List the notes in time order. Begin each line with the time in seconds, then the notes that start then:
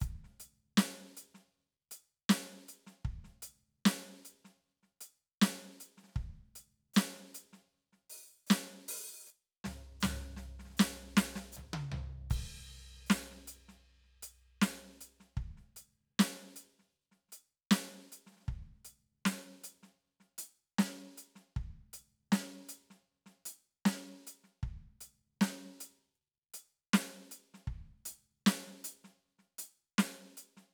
0.01 kick, hi-hat pedal
0.05 closed hi-hat
0.25 snare
0.28 snare
0.31 snare
0.34 snare
0.40 closed hi-hat
0.78 snare
1.17 closed hi-hat
1.35 snare
1.92 closed hi-hat
2.30 snare
2.69 closed hi-hat
2.87 snare
3.05 kick, closed hi-hat
3.25 snare
3.43 closed hi-hat
3.86 snare
4.25 closed hi-hat
4.45 snare
4.64 closed hi-hat
4.83 snare
5.01 closed hi-hat
5.42 snare
5.49 snare
5.64 snare
5.81 closed hi-hat
5.98 snare
6.04 snare
6.09 snare
6.12 kick, snare
6.17 snare
6.21 snare
6.25 snare
6.33 snare
6.56 closed hi-hat
6.94 snare, hi-hat pedal
7.16 snare
7.21 snare
7.35 closed hi-hat
7.53 snare
7.93 snare
8.10 open hi-hat
8.47 snare, hi-hat pedal
8.75 snare
8.89 open hi-hat
9.27 hi-hat pedal
9.65 snare, floor tom
10.01 snare, floor tom, hi-hat pedal
10.21 snare
10.37 snare
10.60 snare
10.65 snare
10.70 snare
10.74 snare, hi-hat pedal
10.79 snare
11.17 snare
11.36 snare
11.53 hi-hat pedal
11.57 floor tom
11.74 high tom
11.92 floor tom
12.31 kick, hi-hat pedal, crash
12.69 open hi-hat
13.07 snare, hi-hat pedal
13.31 snare
13.48 closed hi-hat
13.69 snare
14.04 snare
14.23 closed hi-hat
14.62 snare
15.01 closed hi-hat
15.21 snare
15.37 kick, closed hi-hat
15.58 snare
15.77 closed hi-hat
16.20 snare
16.39 snare
16.56 closed hi-hat
16.80 snare
16.94 closed hi-hat
17.12 snare
17.29 closed hi-hat, snare
17.71 snare
17.90 snare
18.12 closed hi-hat
18.27 snare
18.33 snare
18.37 snare
18.40 snare
18.44 snare
18.49 kick, snare
18.53 snare
18.58 snare
18.76 snare
18.85 closed hi-hat
19.26 snare
19.47 snare
19.64 closed hi-hat
19.83 snare
20.01 closed hi-hat
20.21 snare
20.39 closed hi-hat
20.79 snare
20.97 snare
21.18 closed hi-hat
21.36 snare
21.57 kick
21.94 closed hi-hat
22.33 snare
22.69 closed hi-hat
22.91 snare
23.26 snare
23.46 closed hi-hat
23.86 snare
24.27 closed hi-hat
24.44 snare
24.63 kick
25.01 closed hi-hat
25.42 snare
25.66 snare
25.81 closed hi-hat
26.16 closed hi-hat
26.54 closed hi-hat
26.94 snare
27.14 snare
27.32 closed hi-hat
27.54 snare
27.68 kick
27.75 kick
28.06 closed hi-hat
28.47 snare
28.68 snare
28.85 closed hi-hat
29.05 snare
29.39 snare
29.59 closed hi-hat
29.99 snare
30.17 snare
30.38 closed hi-hat
30.57 snare